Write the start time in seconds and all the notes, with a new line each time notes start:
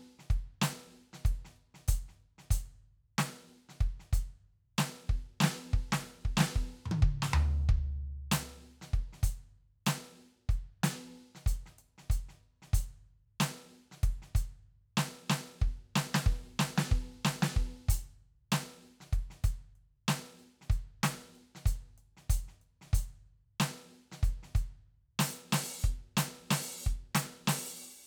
0.19 snare
0.30 kick, closed hi-hat
0.62 closed hi-hat, snare
1.13 snare
1.25 kick, closed hi-hat
1.45 snare
1.56 closed hi-hat
1.74 snare
1.88 closed hi-hat, kick
2.09 snare
2.20 closed hi-hat
2.38 snare
2.51 closed hi-hat, kick
3.18 closed hi-hat, snare
3.69 snare
3.81 kick, closed hi-hat
3.85 crash
4.00 snare
4.13 closed hi-hat, kick
4.78 closed hi-hat, snare
5.10 kick
5.41 snare
5.44 snare
5.74 kick
5.92 snare
6.25 kick
6.37 snare
6.41 snare
6.56 kick
6.86 mid tom
6.91 high tom
7.03 kick
7.22 snare
7.34 floor tom
7.66 kick
7.69 kick
8.32 closed hi-hat, snare
8.82 snare
8.94 kick, closed hi-hat
9.13 snare
9.23 closed hi-hat, kick
9.86 closed hi-hat, snare
10.49 closed hi-hat, kick
10.84 closed hi-hat, snare
11.16 closed hi-hat
11.35 snare
11.46 closed hi-hat, kick, snare
11.66 snare
11.79 closed hi-hat
11.98 snare
12.10 closed hi-hat, kick
12.29 snare
12.43 closed hi-hat
12.62 snare
12.74 closed hi-hat, kick
13.40 closed hi-hat, snare
13.66 snare
13.92 snare
14.03 kick, closed hi-hat
14.22 snare
14.35 closed hi-hat, kick
14.97 snare
15.30 snare
15.62 kick
15.96 snare
16.15 snare
16.26 kick
16.59 snare
16.78 snare
16.92 kick
17.25 snare
17.43 snare
17.57 kick
17.89 closed hi-hat, kick
18.52 snare, closed hi-hat
19.01 snare
19.13 kick, closed hi-hat
19.30 snare
19.44 closed hi-hat, kick
19.76 closed hi-hat
20.08 closed hi-hat, snare
20.39 closed hi-hat
20.61 snare
20.70 closed hi-hat, kick
21.03 closed hi-hat, snare
21.36 closed hi-hat
21.55 snare
21.66 closed hi-hat, kick
21.87 snare
21.98 closed hi-hat
22.17 snare
22.30 closed hi-hat, kick
22.48 snare
22.62 closed hi-hat
22.81 snare
22.85 snare
22.93 closed hi-hat, kick
23.60 closed hi-hat, snare
24.12 snare
24.23 closed hi-hat, kick
24.43 snare
24.55 closed hi-hat, kick
25.19 open hi-hat, snare
25.53 open hi-hat, snare
25.84 kick, hi-hat pedal
26.17 closed hi-hat, snare
26.51 open hi-hat, snare
26.86 kick, hi-hat pedal
27.15 closed hi-hat, snare
27.48 open hi-hat, snare